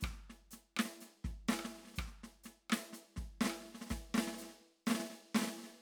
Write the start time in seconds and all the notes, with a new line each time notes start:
0.01 kick, cross-stick, snare, hi-hat pedal
0.09 kick
0.11 kick, snare
0.19 snare
0.30 snare
0.51 snare, hi-hat pedal
0.77 cross-stick, snare
0.86 snare
1.01 snare, hi-hat pedal
1.02 snare
1.25 kick, snare
1.31 kick
1.49 snare, hi-hat pedal
1.52 cross-stick, snare
1.60 cross-stick
1.65 snare
1.69 snare
1.74 snare
1.79 snare
1.82 snare
1.84 snare
1.85 snare
1.88 snare
1.94 snare, hi-hat pedal
1.99 kick, cross-stick
2.04 kick
2.08 snare
2.17 snare
2.24 snare
2.44 snare, hi-hat pedal
2.70 cross-stick, snare
2.77 snare
2.93 snare, hi-hat pedal
3.02 snare
3.06 snare
3.17 kick, snare
3.24 kick
3.41 snare, hi-hat pedal
3.45 snare
3.46 snare
3.50 cross-stick
3.59 snare
3.61 snare
3.66 snare
3.69 snare
3.73 snare
3.75 snare
3.82 snare
3.87 snare, hi-hat pedal
3.91 kick, snare
3.97 kick
4.15 snare
4.18 snare
4.23 snare
4.28 snare
4.33 snare
4.38 snare, hi-hat pedal
4.42 snare
4.49 snare
4.52 snare
4.61 snare
4.87 snare, hi-hat pedal
4.90 snare
4.95 snare
4.99 snare
5.03 snare
5.05 snare
5.10 snare
5.13 snare
5.35 snare, hi-hat pedal
5.39 snare
5.42 snare
5.44 snare
5.48 snare
5.53 snare
5.57 snare
5.59 snare
5.63 snare
5.70 snare
5.74 snare
5.78 snare